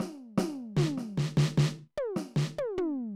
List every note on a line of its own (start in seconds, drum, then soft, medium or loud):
0.00 snare medium
0.00 floor tom medium
0.38 snare medium
0.38 floor tom medium
0.77 snare loud
0.77 floor tom loud
0.98 snare soft
1.18 snare medium
1.37 snare loud
1.58 snare loud
1.97 high tom loud
2.16 snare medium
2.36 snare loud
2.58 high tom loud
2.77 floor tom loud